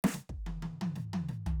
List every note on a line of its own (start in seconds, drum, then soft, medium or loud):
0.04 snare loud
0.14 snare medium
0.29 kick soft
0.46 high tom loud
0.62 high tom loud
0.81 high tom loud
0.96 snare soft
1.13 high tom loud
1.29 snare soft
1.46 floor tom loud